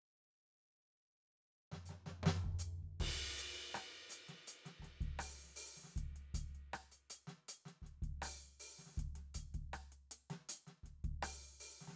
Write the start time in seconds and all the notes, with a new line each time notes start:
1.72 snare, floor tom
1.85 snare, hi-hat pedal
1.90 floor tom
2.06 snare, floor tom
2.23 snare, floor tom
2.44 kick
2.59 hi-hat pedal
2.82 kick
3.00 kick, crash, ride
3.38 hi-hat pedal
3.55 closed hi-hat
3.74 cross-stick, closed hi-hat
3.77 cross-stick
3.93 closed hi-hat
4.09 closed hi-hat, hi-hat pedal
4.28 snare, closed hi-hat
4.47 closed hi-hat, hi-hat pedal
4.65 snare, closed hi-hat
4.80 kick, snare
4.84 closed hi-hat
5.01 kick, closed hi-hat
5.19 open hi-hat, cross-stick
5.44 snare
5.46 snare
5.56 open hi-hat
5.76 snare
5.84 snare
5.88 snare
5.96 kick, closed hi-hat, hi-hat pedal
6.16 closed hi-hat
6.21 snare
6.34 closed hi-hat, kick
6.55 closed hi-hat
6.73 cross-stick, closed hi-hat
6.91 closed hi-hat
7.10 closed hi-hat
7.27 snare, closed hi-hat
7.48 closed hi-hat
7.65 snare, closed hi-hat
7.82 kick, snare
7.86 closed hi-hat
8.02 kick, closed hi-hat
8.22 open hi-hat, cross-stick
8.25 cross-stick
8.43 snare
8.60 open hi-hat
8.78 snare
8.86 snare
8.91 snare
8.96 kick, closed hi-hat, hi-hat pedal
9.15 snare, closed hi-hat
9.34 closed hi-hat, kick
9.54 kick, closed hi-hat
9.73 cross-stick, closed hi-hat
9.92 closed hi-hat
10.11 closed hi-hat
10.30 snare, closed hi-hat
10.49 closed hi-hat
10.67 snare, closed hi-hat
10.83 kick, snare, closed hi-hat
11.04 kick, closed hi-hat
11.23 open hi-hat, cross-stick
11.60 open hi-hat
11.81 snare
11.87 snare
11.92 snare